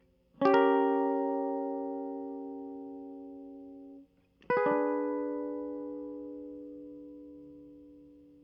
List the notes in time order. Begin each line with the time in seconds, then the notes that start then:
0.42 C#4 G4
0.54 A#4
4.51 B4
4.57 G#4
4.67 D4
4.72 G#3